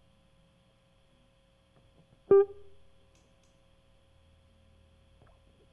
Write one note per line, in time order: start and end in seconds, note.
2.32 2.46 G4